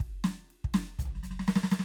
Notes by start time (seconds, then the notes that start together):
0.00 kick, ride
0.24 snare, ride
0.51 ride
0.65 kick
0.74 snare, ride
0.99 kick, floor tom, hi-hat pedal
1.06 high tom
1.15 snare
1.23 snare, hi-hat pedal
1.31 snare
1.40 snare
1.47 snare, hi-hat pedal
1.56 snare
1.64 snare
1.71 snare, hi-hat pedal
1.80 snare